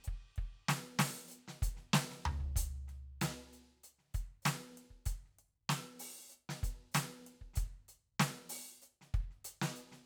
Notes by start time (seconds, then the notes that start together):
0.01 snare
0.04 open hi-hat, kick, snare, hi-hat pedal
0.36 kick, closed hi-hat
0.69 closed hi-hat, snare
0.99 open hi-hat, snare
1.28 closed hi-hat, hi-hat pedal
1.48 snare
1.62 closed hi-hat, kick
1.69 kick
1.72 kick
1.77 snare
1.94 snare
2.11 snare
2.26 floor tom
2.40 kick
2.56 closed hi-hat, kick
2.88 snare, closed hi-hat
3.21 closed hi-hat, snare
3.53 closed hi-hat
3.77 snare
3.84 closed hi-hat
3.99 snare
4.03 snare
4.07 snare
4.09 snare
4.14 closed hi-hat, kick
4.43 closed hi-hat, snare, hi-hat pedal
4.78 closed hi-hat
4.91 kick
5.06 closed hi-hat, kick
5.12 kick
5.26 snare
5.30 snare
5.39 closed hi-hat
5.70 closed hi-hat, snare
6.00 open hi-hat
6.30 closed hi-hat, hi-hat pedal
6.49 snare
6.61 closed hi-hat, kick, snare
6.71 kick
6.92 closed hi-hat, snare, hi-hat pedal
7.27 closed hi-hat
7.42 kick
7.54 closed hi-hat, kick, snare
7.59 snare
7.63 kick
7.66 kick
7.89 closed hi-hat
8.20 closed hi-hat, snare
8.50 open hi-hat
8.82 closed hi-hat, hi-hat pedal
9.01 snare
9.14 kick, closed hi-hat
9.21 kick
9.24 kick
9.31 snare
9.45 closed hi-hat
9.62 snare
9.76 closed hi-hat
9.92 snare